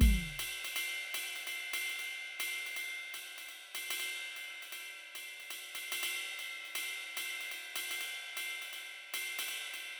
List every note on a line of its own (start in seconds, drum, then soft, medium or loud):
0.02 kick medium
0.02 ride loud
0.40 ride loud
0.65 ride loud
0.77 ride loud
1.15 ride loud
1.37 ride medium
1.48 ride medium
1.74 ride loud
1.90 ride medium
2.00 ride medium
2.41 ride loud
2.67 ride medium
3.15 ride medium
3.39 ride medium
3.49 ride bell medium
3.76 ride loud
3.91 ride loud
4.01 ride medium
4.37 ride medium
4.63 ride medium
4.73 ride medium
5.16 ride medium
5.41 ride soft
5.51 ride loud
5.76 ride loud
5.93 ride loud
6.04 ride loud
6.40 ride medium
6.66 ride soft
7.18 ride loud
7.42 ride medium
7.52 ride medium
7.77 ride loud
7.92 ride loud
8.02 ride medium
8.38 ride loud
8.63 ride medium
8.74 ride medium
9.15 ride loud
9.40 ride loud
9.49 ride medium
9.75 ride medium